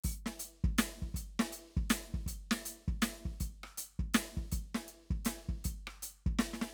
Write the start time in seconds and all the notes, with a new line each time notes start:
0.05 open hi-hat, kick
0.26 snare
0.39 closed hi-hat
0.64 kick
0.78 closed hi-hat, snare
1.02 kick
1.14 closed hi-hat, kick
1.39 snare
1.52 closed hi-hat
1.77 kick
1.90 closed hi-hat, snare
2.14 kick
2.26 closed hi-hat, kick
2.51 snare
2.65 closed hi-hat
2.88 kick
3.02 closed hi-hat, snare
3.25 kick
3.40 closed hi-hat, kick
3.63 cross-stick
3.78 closed hi-hat
3.99 kick
4.14 closed hi-hat, snare
4.37 kick
4.52 closed hi-hat, kick
4.75 snare
4.88 closed hi-hat
5.10 kick
5.25 closed hi-hat, snare
5.49 kick
5.64 closed hi-hat, kick
5.87 cross-stick
6.02 closed hi-hat
6.26 kick
6.39 snare
6.53 snare
6.61 snare